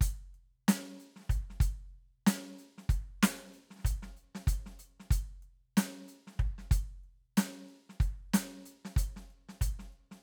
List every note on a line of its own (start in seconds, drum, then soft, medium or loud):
0.01 closed hi-hat medium
0.01 kick medium
0.34 closed hi-hat soft
0.68 closed hi-hat loud
0.68 snare loud
1.00 closed hi-hat soft
1.16 snare soft
1.19 snare soft
1.22 snare soft
1.30 closed hi-hat soft
1.30 kick medium
1.50 snare soft
1.61 closed hi-hat medium
1.61 kick medium
2.27 closed hi-hat loud
2.27 snare loud
2.59 closed hi-hat soft
2.78 snare soft
2.89 closed hi-hat soft
2.89 kick medium
3.23 closed hi-hat loud
3.23 snare loud
3.53 closed hi-hat soft
3.71 snare soft
3.76 snare soft
3.79 snare soft
3.85 closed hi-hat medium
3.85 kick medium
4.03 snare soft
4.17 closed hi-hat soft
4.35 snare medium
4.47 closed hi-hat medium
4.47 kick medium
4.66 snare soft
4.79 closed hi-hat soft
5.00 snare soft
5.11 closed hi-hat medium
5.11 kick medium
5.43 closed hi-hat soft
5.77 closed hi-hat loud
5.77 snare loud
6.08 closed hi-hat soft
6.27 snare soft
6.32 snare soft
6.36 kick medium
6.36 snare soft
6.40 closed hi-hat soft
6.58 snare soft
6.71 closed hi-hat medium
6.71 kick medium
7.04 closed hi-hat soft
7.37 closed hi-hat loud
7.37 snare loud
7.69 closed hi-hat soft
7.90 snare soft
8.00 closed hi-hat soft
8.00 kick medium
8.07 ride soft
8.34 closed hi-hat loud
8.34 snare loud
8.66 closed hi-hat soft
8.85 snare medium
8.97 closed hi-hat medium
8.97 kick medium
9.16 snare soft
9.30 closed hi-hat soft
9.49 snare soft
9.61 closed hi-hat medium
9.61 kick medium
9.79 snare soft
9.93 closed hi-hat soft
10.11 snare soft